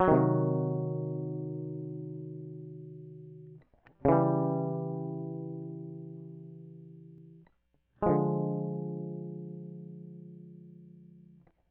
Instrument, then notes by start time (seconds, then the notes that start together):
electric guitar
0.00 F#3
0.08 D#3
0.12 C3
4.06 C#3 E3
4.12 G3
8.02 G#3
8.06 D3 F3